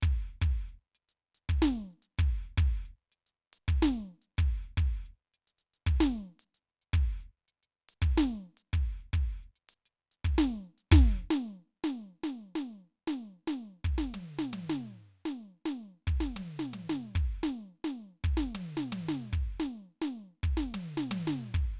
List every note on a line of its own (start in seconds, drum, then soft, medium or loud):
0.01 kick medium
0.01 closed hi-hat medium
0.14 closed hi-hat medium
0.26 closed hi-hat medium
0.41 kick medium
0.41 closed hi-hat medium
0.68 closed hi-hat medium
0.95 closed hi-hat medium
1.09 closed hi-hat medium
1.35 closed hi-hat medium
1.49 kick medium
1.62 snare loud
1.90 closed hi-hat medium
2.02 closed hi-hat medium
2.18 kick medium
2.18 closed hi-hat soft
2.31 closed hi-hat medium
2.43 closed hi-hat medium
2.58 kick medium
2.58 closed hi-hat medium
2.85 closed hi-hat medium
3.12 closed hi-hat medium
3.26 closed hi-hat medium
3.53 closed hi-hat loud
3.68 kick medium
3.82 snare loud
4.08 closed hi-hat soft
4.22 closed hi-hat medium
4.37 kick medium
4.37 closed hi-hat medium
4.50 closed hi-hat soft
4.63 closed hi-hat medium
4.77 kick medium
4.77 closed hi-hat medium
5.05 closed hi-hat medium
5.34 closed hi-hat medium
5.47 closed hi-hat medium
5.59 closed hi-hat medium
5.74 closed hi-hat medium
5.87 kick medium
6.00 snare loud
6.28 closed hi-hat soft
6.40 closed hi-hat loud
6.55 closed hi-hat medium
6.69 closed hi-hat soft
6.82 closed hi-hat soft
6.93 closed hi-hat medium
6.93 kick medium
7.20 closed hi-hat medium
7.33 closed hi-hat soft
7.48 closed hi-hat medium
7.63 closed hi-hat medium
7.89 closed hi-hat loud
8.02 kick medium
8.18 snare loud
8.45 closed hi-hat soft
8.57 closed hi-hat loud
8.73 kick medium
8.73 closed hi-hat medium
8.85 closed hi-hat medium
9.00 closed hi-hat soft
9.13 kick medium
9.13 closed hi-hat medium
9.28 closed hi-hat soft
9.42 closed hi-hat medium
9.56 closed hi-hat medium
9.69 closed hi-hat loud
9.86 closed hi-hat medium
10.11 closed hi-hat medium
10.25 kick medium
10.38 snare loud
10.64 closed hi-hat medium
10.78 closed hi-hat medium
10.92 kick loud
10.92 snare loud
11.31 snare loud
11.84 snare medium
12.24 snare medium
12.55 snare medium
13.08 snare medium
13.48 snare medium
13.84 kick medium
13.98 snare medium
14.14 high tom medium
14.39 snare medium
14.53 high tom medium
14.70 snare medium
15.25 snare medium
15.66 snare medium
16.07 kick medium
16.20 snare medium
16.36 high tom medium
16.59 snare medium
16.74 high tom medium
16.90 snare medium
17.15 kick medium
17.43 snare medium
17.84 snare medium
18.24 kick medium
18.37 snare medium
18.55 high tom medium
18.77 snare medium
18.92 high tom loud
19.09 snare medium
19.33 kick medium
19.60 snare medium
20.02 snare medium
20.43 kick medium
20.57 snare medium
20.74 high tom medium
20.97 snare medium
21.11 high tom loud
21.27 snare medium
21.54 kick medium